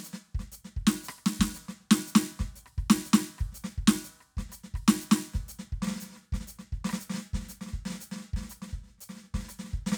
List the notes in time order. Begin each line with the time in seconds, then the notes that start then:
0.01 snare
0.03 snare, hi-hat pedal
0.15 snare
0.29 snare
0.36 kick
0.41 snare
0.53 snare, hi-hat pedal
0.66 snare
0.78 kick, cross-stick
0.88 snare
0.98 snare
1.01 snare, hi-hat pedal
1.10 cross-stick
1.19 cross-stick
1.27 snare
1.41 kick, snare
1.55 cross-stick, hi-hat pedal
1.70 snare
1.81 snare
1.92 snare
2.04 snare, hi-hat pedal
2.17 snare
2.25 snare
2.30 snare
2.41 kick, snare
2.54 snare, hi-hat pedal
2.67 cross-stick
2.78 kick, cross-stick, snare
2.91 snare
3.02 cross-stick, snare
3.06 hi-hat pedal
3.15 snare
3.20 cross-stick
3.29 cross-stick
3.40 kick, cross-stick
3.53 snare, hi-hat pedal
3.65 snare
3.77 kick, snare
3.89 snare
4.01 snare
4.03 snare, hi-hat pedal
4.22 cross-stick
4.38 kick, snare
4.51 cross-stick, snare, hi-hat pedal
4.65 snare
4.75 kick, cross-stick
4.89 snare
5.01 snare, hi-hat pedal
5.13 snare
5.18 cross-stick
5.35 kick, snare
5.47 snare, hi-hat pedal
5.50 snare
5.60 snare
5.68 snare
5.73 kick, snare
5.83 snare
5.88 snare
5.93 snare
5.97 snare
6.01 snare, hi-hat pedal
6.07 snare
6.10 snare
6.11 snare
6.13 snare
6.17 cross-stick
6.24 snare
6.34 kick, snare
6.41 snare
6.48 snare, hi-hat pedal
6.60 snare
6.74 kick, snare
6.86 snare
6.91 cross-stick, snare
6.99 cross-stick, hi-hat pedal
7.11 snare
7.15 snare
7.19 snare
7.35 kick, snare
7.40 snare
7.44 snare
7.50 snare, hi-hat pedal
7.62 snare
7.68 snare
7.73 kick, snare
7.87 snare
7.91 snare
7.94 snare
8.00 snare, hi-hat pedal
8.13 snare
8.17 snare
8.21 snare
8.35 kick, snare
8.42 snare
8.46 snare
8.51 cross-stick, hi-hat pedal
8.63 snare
8.68 snare
8.73 kick, snare
8.77 snare
8.85 snare
8.88 snare
8.99 snare, hi-hat pedal, crash
9.11 snare
9.14 snare
9.17 snare
9.25 snare
9.35 kick, snare
9.40 snare
9.44 snare
9.48 cross-stick, snare, hi-hat pedal
9.60 snare
9.65 snare
9.70 snare
9.74 kick, snare
9.88 snare
9.93 snare